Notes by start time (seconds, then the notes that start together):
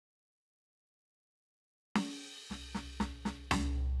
1.95 snare, crash
2.50 snare, floor tom
2.74 snare, floor tom
3.00 snare, floor tom
3.25 snare, floor tom
3.51 snare, floor tom